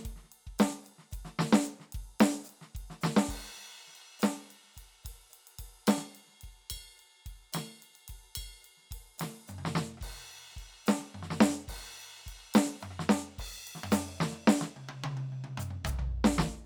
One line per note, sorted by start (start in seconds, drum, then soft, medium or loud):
0.01 hi-hat pedal soft
0.06 kick soft
0.06 ride medium
0.12 kick soft
0.17 snare soft
0.24 snare soft
0.32 ride medium
0.47 kick soft
0.59 snare loud
0.59 hi-hat pedal medium
0.59 ride loud
0.71 snare soft
0.84 hi-hat pedal soft
0.84 ride soft
0.99 snare soft
1.12 kick soft
1.12 hi-hat pedal soft
1.12 ride medium
1.20 kick soft
1.26 snare soft
1.40 snare loud
1.53 snare loud
1.64 hi-hat pedal medium
1.64 ride bell soft
1.81 snare soft
1.93 kick medium
1.93 ride medium
2.02 kick soft
2.20 snare loud
2.20 ride loud
2.45 hi-hat pedal medium
2.50 ride medium
2.62 snare soft
2.76 kick soft
2.76 ride medium
2.82 kick soft
2.91 snare soft
3.02 snare loud
3.02 hi-hat pedal medium
3.17 snare loud
3.29 kick soft
3.29 crash medium
3.36 kick soft
3.88 snare soft
3.96 ride soft
4.20 snare medium
4.20 hi-hat pedal medium
4.20 ride loud
4.51 ride medium
4.74 kick soft
4.74 hi-hat pedal soft
4.78 ride medium
5.04 kick soft
5.04 hi-hat pedal soft
5.04 ride medium
5.11 kick soft
5.31 hi-hat pedal soft
5.31 ride medium
5.48 ride medium
5.59 kick soft
5.59 snare soft
5.59 ride medium
5.87 snare loud
5.87 hi-hat pedal medium
5.87 ride bell loud
5.98 snare soft
6.15 hi-hat pedal soft
6.15 ride medium
6.28 snare soft
6.42 kick soft
6.42 ride medium
6.71 kick soft
6.71 ride bell loud
6.77 kick soft
6.97 hi-hat pedal soft
6.97 ride soft
7.27 kick soft
7.27 ride medium
7.53 snare medium
7.53 hi-hat pedal medium
7.53 ride bell loud
7.80 hi-hat pedal soft
7.80 ride medium
7.96 ride soft
8.09 kick soft
8.09 ride medium
8.36 kick soft
8.36 ride bell loud
8.44 kick soft
8.62 hi-hat pedal soft
8.62 ride medium
8.78 snare soft
8.83 snare soft
8.86 snare soft
8.92 kick soft
8.92 ride medium
8.97 kick soft
9.19 snare medium
9.19 hi-hat pedal medium
9.19 ride loud
9.30 snare soft
9.48 hi-hat pedal medium
9.48 mid tom medium
9.59 high tom medium
9.66 snare medium
9.98 kick soft
9.98 cross-stick soft
10.03 crash medium
10.08 kick soft
10.52 cross-stick soft
10.57 kick soft
10.57 ride soft
10.65 kick soft
10.87 snare loud
10.87 hi-hat pedal medium
10.87 ride medium
10.99 snare soft
11.15 mid tom medium
11.23 snare soft
11.31 snare medium
11.37 hi-hat pedal soft
11.41 snare loud
11.50 snare soft
11.69 kick soft
11.69 snare soft
11.69 crash medium
11.75 kick soft
11.97 hi-hat pedal soft
11.97 ride medium
12.21 snare soft
12.27 kick soft
12.27 ride medium
12.55 snare loud
12.55 hi-hat pedal medium
12.55 ride loud
12.66 snare soft
12.81 hi-hat pedal soft
12.81 mid tom medium
12.91 cross-stick soft
13.00 snare medium
13.10 snare loud
13.10 hi-hat pedal medium
13.39 kick soft
13.39 snare soft
13.39 crash medium
13.68 ride medium
13.76 snare soft
13.84 mid tom medium
13.92 snare loud
13.92 hi-hat pedal loud
14.21 snare loud
14.32 snare soft
14.48 snare loud
14.62 snare medium
14.77 high tom medium
14.89 high tom medium
15.04 high tom loud
15.18 high tom medium
15.33 high tom soft
15.45 high tom medium
15.58 hi-hat pedal loud
15.58 mid tom loud
15.71 mid tom medium
15.85 kick soft
15.85 hi-hat pedal loud
15.85 floor tom loud
15.99 floor tom medium
16.12 kick soft
16.25 snare loud
16.39 kick soft
16.39 snare loud